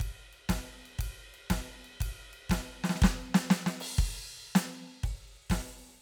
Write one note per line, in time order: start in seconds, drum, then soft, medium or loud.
0.01 kick medium
0.01 ride loud
0.34 ride soft
0.50 kick medium
0.50 snare loud
0.50 ride loud
0.86 ride soft
0.99 kick medium
0.99 ride loud
1.35 ride soft
1.51 kick medium
1.51 snare loud
1.51 ride loud
1.85 ride soft
2.01 kick medium
2.01 ride loud
2.34 ride medium
2.50 kick medium
2.50 snare loud
2.50 ride loud
2.85 snare medium
2.90 snare medium
2.96 snare medium
3.03 kick loud
3.03 snare loud
3.35 snare loud
3.51 snare loud
3.67 snare loud
3.81 crash loud
3.99 kick medium
3.99 crash medium
4.56 open hi-hat loud
4.56 snare loud
5.04 open hi-hat medium
5.04 kick medium
5.37 open hi-hat soft
5.51 open hi-hat loud
5.51 kick medium
5.51 snare loud
5.89 open hi-hat soft